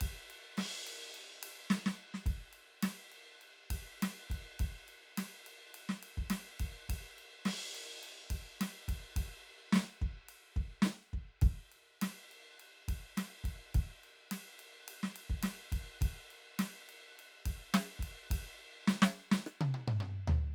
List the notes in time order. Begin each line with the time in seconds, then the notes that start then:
0.01 kick, ride
0.30 ride
0.57 snare, ride
0.87 ride
1.14 ride
1.43 ride
1.70 snare
1.86 snare
2.14 snare
2.26 kick, ride
2.53 ride
2.83 snare, ride
3.12 ride
3.41 ride
3.70 kick, ride
4.03 snare, ride
4.30 kick, ride
4.60 kick, ride
4.88 ride
5.18 snare, ride
5.46 ride
5.75 ride
5.89 snare
6.03 ride
6.17 kick
6.30 snare, ride
6.60 kick, ride
6.89 kick, ride
7.18 ride
7.45 snare, ride
7.75 ride
8.03 ride
8.30 kick, ride
8.61 snare, ride
8.88 kick, ride
9.16 kick, ride
9.73 snare
9.76 snare
10.02 kick
10.29 ride
10.56 kick
10.82 snare
10.86 cross-stick
11.13 kick
11.42 kick, ride
11.72 ride
12.02 snare, ride
12.31 ride
12.60 ride
12.88 kick, ride
13.17 snare, ride
13.44 kick, ride
13.75 kick, ride
14.04 ride
14.31 snare, ride
14.59 ride
14.88 ride
15.03 snare
15.16 ride
15.30 kick
15.43 snare, ride
15.72 kick, ride
16.01 kick, ride
16.31 ride
16.59 snare, ride
16.89 ride
17.19 ride
17.46 kick, ride
17.74 snare, ride
17.99 kick, ride
18.31 kick, ride
18.88 snare
19.02 snare
19.32 snare
19.46 cross-stick
19.61 high tom
19.74 high tom
19.88 mid tom
20.00 mid tom
20.28 floor tom